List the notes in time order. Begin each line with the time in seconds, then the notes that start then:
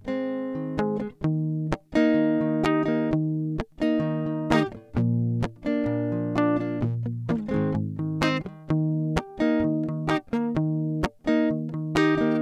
0.07 G#3 C4
0.56 D#3
0.80 G#3 C4
1.03 G#3
1.26 D#3
1.98 A#3 D#4
2.16 D#3
2.43 D#3
2.66 A#3 D#4 G4
2.85 D#4
2.91 A#3
3.15 D#3
3.84 A#3 D#4
4.01 D#3 A#3
4.29 D#3
4.53 D#3 D#4
4.57 G4
4.99 A#2 F3
5.69 A#3 D4
5.87 A#2
6.15 F3
6.38 D4 F4
6.59 A#3 D4
6.83 A#2
7.08 A#3
7.51 D#3 G#3 C4
7.57 G#2
7.78 G#2
8.02 D#3
8.24 C4 D#4
8.43 D#3
8.72 D#3
9.21 G4
9.43 A#3 D#4
9.66 D#3
9.91 D#3
10.11 D#4 G4
10.35 D#3 A#3
10.59 D#3
11.30 A#3 D#4
11.52 D#3
11.76 D#3
11.98 D#4 G4
12.17 D#4
12.21 D#3 A#3